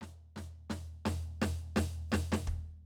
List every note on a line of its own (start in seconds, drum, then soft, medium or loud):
0.01 snare soft
0.01 floor tom soft
0.36 snare soft
0.36 floor tom medium
0.70 snare medium
0.70 floor tom medium
1.05 snare medium
1.05 floor tom loud
1.42 snare medium
1.42 floor tom loud
1.76 snare loud
1.76 floor tom loud
2.09 snare medium
2.09 floor tom loud
2.09 hi-hat pedal soft
2.32 snare medium
2.32 floor tom loud
2.47 kick medium